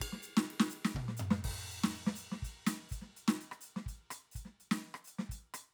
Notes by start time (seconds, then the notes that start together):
0.01 kick, ride bell
0.13 snare
0.23 hi-hat pedal, ride
0.37 snare
0.51 ride
0.60 snare
0.70 hi-hat pedal, ride
0.85 snare
0.95 kick, mid tom
1.09 snare
1.17 floor tom, hi-hat pedal
1.31 snare
1.45 kick, crash
1.51 kick
1.56 kick
1.72 closed hi-hat
1.84 snare
1.95 closed hi-hat
2.07 snare
2.16 closed hi-hat, hi-hat pedal
2.32 snare
2.43 closed hi-hat, kick
2.67 closed hi-hat, snare
2.89 closed hi-hat, kick, hi-hat pedal
3.02 snare
3.09 snare
3.17 closed hi-hat
3.28 snare
3.41 closed hi-hat
3.52 cross-stick
3.61 closed hi-hat, hi-hat pedal
3.77 snare
3.87 closed hi-hat, kick
4.11 closed hi-hat, cross-stick
4.32 kick, hi-hat pedal
4.36 closed hi-hat
4.46 snare
4.60 closed hi-hat
4.72 snare
4.85 closed hi-hat
4.95 cross-stick
5.05 closed hi-hat, hi-hat pedal
5.19 snare
5.30 closed hi-hat, kick
5.54 closed hi-hat, cross-stick